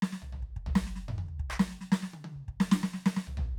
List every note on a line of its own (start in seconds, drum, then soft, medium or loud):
0.03 snare loud
0.13 snare medium
0.23 floor tom medium
0.33 floor tom medium
0.43 kick soft
0.57 kick soft
0.67 floor tom loud
0.76 snare loud
0.87 snare medium
0.96 snare medium
1.09 mid tom loud
1.19 high tom medium
1.29 kick soft
1.40 kick soft
1.51 percussion loud
1.60 snare loud
1.71 snare medium
1.82 snare medium
1.93 snare loud
2.03 snare medium
2.14 high tom medium
2.25 high tom loud
2.36 kick soft
2.49 kick soft
2.61 snare loud
2.72 snare loud
2.84 snare loud
2.94 snare medium
3.07 snare loud
3.17 snare loud
3.28 floor tom medium
3.38 floor tom loud